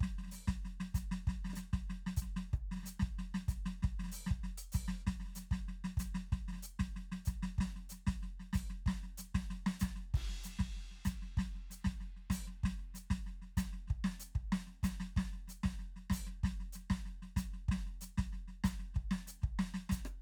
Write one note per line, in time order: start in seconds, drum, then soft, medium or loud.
0.01 kick soft
0.01 snare medium
0.19 snare soft
0.24 snare soft
0.28 snare soft
0.32 snare soft
0.32 hi-hat pedal medium
0.48 kick medium
0.48 snare medium
0.65 snare soft
0.81 snare medium
0.95 kick soft
0.95 snare soft
0.95 hi-hat pedal medium
1.12 snare medium
1.27 kick soft
1.27 snare medium
1.45 snare soft
1.50 cross-stick soft
1.50 snare soft
1.56 snare soft
1.56 hi-hat pedal medium
1.73 kick soft
1.73 snare medium
1.90 snare soft
2.07 snare medium
2.17 kick soft
2.17 hi-hat pedal medium
2.22 snare soft
2.37 snare medium
2.54 kick soft
2.54 cross-stick soft
2.72 snare soft
2.76 snare soft
2.80 snare soft
2.84 snare soft
2.86 snare soft
2.86 hi-hat pedal medium
3.00 kick medium
3.00 snare medium
3.19 snare soft
3.35 snare medium
3.49 kick soft
3.49 snare soft
3.49 hi-hat pedal medium
3.57 kick soft
3.66 snare medium
3.83 kick medium
3.83 snare soft
4.00 snare soft
4.04 snare soft
4.08 snare soft
4.12 snare soft
4.12 hi-hat pedal medium
4.27 snare medium
4.31 kick soft
4.44 snare soft
4.58 closed hi-hat medium
4.73 kick soft
4.73 snare soft
4.73 hi-hat pedal medium
4.88 snare medium
5.07 kick soft
5.07 snare medium
5.20 snare soft
5.25 snare soft
5.28 snare soft
5.32 snare soft
5.32 hi-hat pedal medium
5.37 snare soft
5.52 kick soft
5.52 snare medium
5.69 snare soft
5.85 snare medium
5.97 kick soft
5.97 snare soft
5.97 hi-hat pedal medium
6.15 snare medium
6.33 kick soft
6.33 snare soft
6.49 snare soft
6.53 snare soft
6.56 snare soft
6.63 hi-hat pedal medium
6.80 kick soft
6.80 snare medium
6.96 snare soft
7.12 snare medium
7.26 kick soft
7.26 snare soft
7.26 hi-hat pedal medium
7.43 snare medium
7.59 kick soft
7.59 snare medium
7.76 snare soft
7.90 snare soft
7.90 hi-hat pedal medium
8.07 kick medium
8.07 snare medium
8.23 snare soft
8.40 snare soft
8.53 kick medium
8.53 snare medium
8.53 hi-hat pedal medium
8.70 snare soft
8.87 kick soft
8.87 snare medium
9.04 snare soft
9.18 snare soft
9.18 hi-hat pedal loud
9.35 kick medium
9.35 snare medium
9.51 snare soft
9.67 snare medium
9.80 kick soft
9.80 snare medium
9.80 hi-hat pedal medium
9.96 snare soft
10.14 kick medium
10.14 ride medium
10.29 snare soft
10.44 snare soft
10.44 hi-hat pedal medium
10.59 kick soft
10.59 snare medium
10.77 snare soft
10.92 snare soft
11.05 kick soft
11.05 snare medium
11.05 hi-hat pedal medium
11.22 snare soft
11.37 kick soft
11.37 snare medium
11.56 snare soft
11.71 snare soft
11.71 hi-hat pedal medium
11.85 kick soft
11.85 snare medium
12.01 snare soft
12.17 snare soft
12.30 kick soft
12.30 snare medium
12.30 hi-hat pedal medium
12.48 snare soft
12.64 kick soft
12.64 snare medium
12.79 snare soft
12.95 snare soft
12.95 hi-hat pedal medium
13.11 kick soft
13.11 snare medium
13.27 snare soft
13.42 snare soft
13.57 kick soft
13.57 snare medium
13.57 hi-hat pedal medium
13.73 snare soft
13.88 kick soft
13.88 snare soft
14.05 snare medium
14.20 snare soft
14.20 hi-hat pedal medium
14.35 kick soft
14.35 snare soft
14.53 snare medium
14.67 snare soft
14.84 kick soft
14.84 snare medium
14.84 hi-hat pedal medium
15.00 snare medium
15.17 kick medium
15.17 snare medium
15.33 snare soft
15.48 snare soft
15.48 hi-hat pedal medium
15.64 kick soft
15.64 snare medium
15.79 snare soft
15.97 snare soft
16.10 kick soft
16.10 snare medium
16.10 hi-hat pedal medium
16.27 snare soft
16.44 kick medium
16.44 snare medium
16.60 snare soft
16.73 snare soft
16.73 hi-hat pedal medium
16.90 kick soft
16.90 snare medium
17.06 snare soft
17.23 snare soft
17.37 kick soft
17.37 snare medium
17.37 hi-hat pedal medium
17.54 snare soft
17.69 kick medium
17.69 snare medium
17.87 snare soft
18.02 snare soft
18.02 hi-hat pedal medium
18.18 kick medium
18.18 snare medium
18.33 snare soft
18.48 snare soft
18.64 kick medium
18.64 snare medium
18.64 hi-hat pedal medium
18.80 snare soft
18.95 kick soft
18.95 snare soft
19.11 snare medium
19.27 snare soft
19.27 hi-hat pedal medium
19.42 kick medium
19.42 snare soft
19.59 snare medium
19.74 snare medium
19.90 kick soft
19.90 snare medium
19.90 hi-hat pedal medium
20.06 cross-stick medium